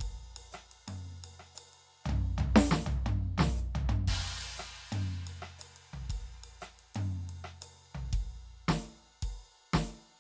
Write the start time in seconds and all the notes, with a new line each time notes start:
0.01 kick, ride
0.37 ride
0.53 cross-stick, hi-hat pedal
0.72 ride
0.88 mid tom, ride
1.24 ride
1.40 cross-stick
1.55 hi-hat pedal, ride
1.74 ride
2.04 floor tom, hi-hat pedal
2.10 mid tom
2.39 floor tom, mid tom
2.56 snare, hi-hat pedal
2.72 snare
2.87 floor tom
3.05 hi-hat pedal, mid tom
3.38 snare, floor tom
3.57 hi-hat pedal
3.76 floor tom
3.90 mid tom
4.08 kick, ride
4.42 ride
4.58 cross-stick, hi-hat pedal
4.77 ride
4.93 mid tom, ride
5.27 ride
5.43 cross-stick
5.59 hi-hat pedal, ride
5.77 ride
5.94 floor tom
6.10 kick, ride
6.44 ride
6.62 cross-stick, hi-hat pedal
6.80 ride
6.95 mid tom, ride
7.10 hi-hat pedal
7.30 ride
7.45 cross-stick
7.62 hi-hat pedal, ride
7.95 floor tom
8.13 kick, ride
8.69 kick, snare, ride
9.23 kick, ride
9.74 kick, snare, ride